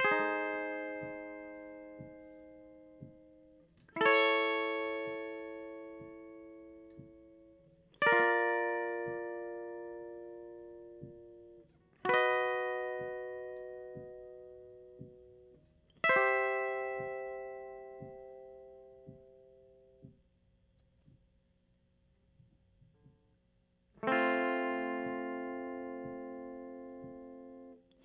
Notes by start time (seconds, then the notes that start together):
0.00 C5
0.05 G#4
0.12 D#4
0.20 A3
3.97 E4
4.01 A4
4.06 C#5
8.03 D5
8.07 A#4
8.13 F4
8.21 B3
12.00 F#5
12.06 F#4
12.10 B4
12.14 D#5
16.05 E5
16.10 C5
16.17 G4
24.04 A3
24.08 C4
24.13 F4